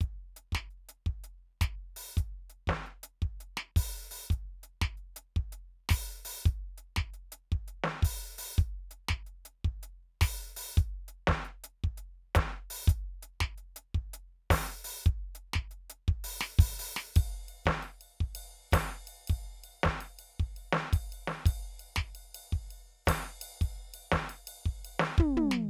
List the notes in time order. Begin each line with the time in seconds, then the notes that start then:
0.02 kick, closed hi-hat
0.36 closed hi-hat
0.52 kick, snare
0.70 closed hi-hat
0.89 closed hi-hat
1.06 kick
1.24 closed hi-hat
1.61 closed hi-hat, kick, snare
1.96 open hi-hat
2.14 closed hi-hat, kick, hi-hat pedal
2.50 closed hi-hat
2.67 kick, snare
2.86 closed hi-hat
3.03 closed hi-hat
3.22 kick
3.40 closed hi-hat
3.57 snare
3.76 open hi-hat, kick
4.11 open hi-hat
4.25 hi-hat pedal
4.30 closed hi-hat, kick
4.63 closed hi-hat
4.81 kick, snare
4.97 closed hi-hat
5.16 closed hi-hat
5.36 kick
5.52 closed hi-hat
5.89 open hi-hat, kick, snare
6.25 open hi-hat
6.42 kick, hi-hat pedal
6.47 closed hi-hat
6.78 closed hi-hat
6.96 kick, snare
7.14 closed hi-hat
7.32 closed hi-hat
7.52 kick
7.68 closed hi-hat
7.84 snare
8.02 open hi-hat, kick
8.38 open hi-hat
8.55 kick, hi-hat pedal
8.91 closed hi-hat
9.08 kick, snare
9.26 closed hi-hat
9.45 closed hi-hat
9.64 kick
9.83 closed hi-hat
10.21 open hi-hat, kick, snare
10.56 open hi-hat
10.75 closed hi-hat, kick, hi-hat pedal
11.08 closed hi-hat
11.27 kick, snare
11.45 closed hi-hat
11.64 closed hi-hat
11.84 kick
11.97 closed hi-hat
12.35 closed hi-hat, kick, snare
12.70 open hi-hat
12.86 closed hi-hat, kick, hi-hat pedal
13.22 closed hi-hat
13.40 kick, snare
13.57 closed hi-hat
13.76 closed hi-hat
13.94 kick
14.13 closed hi-hat
14.50 open hi-hat, kick, snare
14.84 open hi-hat
15.04 closed hi-hat, kick, hi-hat pedal
15.35 closed hi-hat
15.53 kick, snare
15.71 closed hi-hat
15.90 closed hi-hat
16.08 kick
16.24 open hi-hat
16.41 snare
16.59 open hi-hat, kick
16.79 open hi-hat
16.96 snare
17.16 kick, ride
17.48 ride
17.64 kick, snare, hi-hat pedal
17.82 ride
18.01 ride
18.20 kick
18.35 ride
18.71 kick, snare, hi-hat pedal, ride
19.07 ride
19.27 kick, ride
19.54 ride
19.64 ride
19.83 kick, snare, hi-hat pedal
20.00 ride
20.19 ride
20.35 ride
20.40 kick
20.44 ride
20.56 ride
20.73 snare
20.93 kick, ride
21.12 ride
21.27 snare
21.46 kick, ride
21.79 ride
21.95 kick, snare, hi-hat pedal
22.15 ride
22.34 ride
22.52 kick
22.57 ride
22.70 ride
23.05 kick, snare, hi-hat pedal, ride
23.41 ride
23.61 kick, ride
23.94 ride
24.11 kick, snare, hi-hat pedal
24.29 ride
24.47 ride
24.66 kick
24.84 ride
24.99 snare
25.18 kick, floor tom
25.36 floor tom
25.51 snare